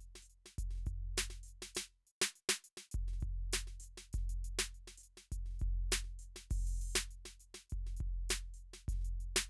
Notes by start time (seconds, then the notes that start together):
0.01 closed hi-hat
0.16 snare
0.23 hi-hat pedal
0.30 closed hi-hat
0.46 snare
0.59 closed hi-hat, kick
0.71 snare
0.75 snare
0.78 snare
0.87 kick, closed hi-hat
0.96 kick
1.18 closed hi-hat, snare
1.30 snare
1.44 hi-hat pedal
1.48 closed hi-hat
1.62 snare
1.75 closed hi-hat, snare
2.07 closed hi-hat
2.22 snare
2.36 closed hi-hat
2.49 snare
2.64 closed hi-hat
2.78 snare
2.92 closed hi-hat, kick
3.08 snare
3.13 snare
3.21 kick, closed hi-hat
3.32 kick
3.53 closed hi-hat, snare
3.68 snare
3.80 closed hi-hat, hi-hat pedal
3.98 snare
4.13 closed hi-hat, kick, snare
4.18 snare
4.30 closed hi-hat
4.45 closed hi-hat
4.59 snare
4.75 closed hi-hat
4.88 snare
4.98 hi-hat pedal
5.04 closed hi-hat
5.18 snare
5.32 closed hi-hat, kick
5.46 snare
5.51 snare
5.55 snare
5.60 kick, closed hi-hat
5.71 kick
5.92 closed hi-hat, snare
6.04 snare
6.19 closed hi-hat, hi-hat pedal
6.36 snare
6.50 open hi-hat, kick, snare
6.61 kick
6.67 open hi-hat
6.82 open hi-hat
6.96 snare
7.11 closed hi-hat
7.26 snare
7.40 closed hi-hat, hi-hat pedal
7.55 snare
7.70 closed hi-hat, kick
7.87 snare
7.97 closed hi-hat, kick
8.07 kick
8.10 kick
8.30 closed hi-hat, snare
8.54 hi-hat pedal
8.59 closed hi-hat
8.74 snare
8.89 closed hi-hat, kick, snare
8.95 kick, snare
8.98 kick, snare
9.02 closed hi-hat, snare
9.21 closed hi-hat
9.37 snare